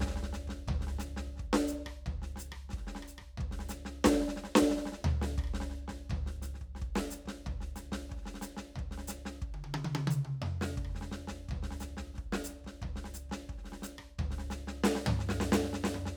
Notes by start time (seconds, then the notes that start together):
0.01 kick, snare
0.06 snare
0.11 snare
0.16 snare
0.23 snare
0.33 snare, hi-hat pedal
0.48 kick, snare
0.68 kick, floor tom
0.81 snare
0.87 snare
0.99 snare, hi-hat pedal
1.17 kick, snare
1.36 kick, snare
1.54 snare
1.68 snare, hi-hat pedal
1.87 kick, cross-stick
2.06 kick, floor tom
2.22 snare
2.36 snare, hi-hat pedal
2.52 kick, cross-stick
2.70 kick, snare
2.78 snare
2.84 snare
2.87 snare
2.96 snare
3.03 cross-stick
3.08 hi-hat pedal
3.19 kick, cross-stick
3.38 kick, floor tom
3.52 snare
3.60 snare
3.69 snare, hi-hat pedal
3.86 snare
4.05 kick, snare
4.13 snare
4.21 snare
4.28 snare
4.37 snare
4.44 snare
4.56 snare
4.62 kick, snare
4.70 snare
4.77 snare
4.86 snare
4.93 snare
5.05 floor tom
5.22 snare
5.38 kick, cross-stick
5.44 cross-stick
5.48 cross-stick
5.54 snare
5.61 snare
5.68 snare
5.70 snare
5.88 kick, snare
6.10 kick, floor tom
6.27 snare
6.42 snare, hi-hat pedal
6.55 snare
6.62 kick
6.76 snare
6.82 kick
6.96 snare
7.11 snare, hi-hat pedal
7.26 kick, snare
7.47 kick, floor tom
7.61 snare
7.76 snare, hi-hat pedal
7.92 kick, snare
8.10 kick, snare
8.17 snare
8.22 snare
8.26 snare
8.35 snare
8.42 snare, hi-hat pedal
8.57 kick, snare
8.76 kick, floor tom
8.91 snare
8.98 snare
9.08 snare, hi-hat pedal
9.26 snare
9.42 kick
9.54 high tom
9.75 high tom
9.85 high tom
9.96 high tom
10.08 hi-hat pedal, high tom
10.25 high tom
10.42 mid tom
10.62 snare
10.78 kick, snare
10.84 kick, cross-stick
10.90 snare
10.95 snare
11.02 snare
11.12 snare
11.28 kick, snare
11.49 kick, floor tom
11.63 snare
11.71 snare
11.80 snare, hi-hat pedal
11.97 kick, snare
12.15 kick, snare
12.33 snare
12.45 snare, hi-hat pedal
12.65 kick, snare
12.82 kick, floor tom
12.96 snare
13.05 snare
13.14 snare, hi-hat pedal
13.30 kick, snare
13.49 kick, snare
13.58 snare
13.64 snare
13.73 snare
13.80 snare, hi-hat pedal
13.99 kick, cross-stick
14.19 kick, floor tom
14.31 snare
14.39 snare
14.51 snare, hi-hat pedal
14.68 snare
14.84 snare
14.96 snare
15.07 floor tom
15.20 snare
15.29 snare
15.41 snare
15.53 snare
15.64 snare
15.73 snare
15.84 snare
15.95 mid tom
16.06 snare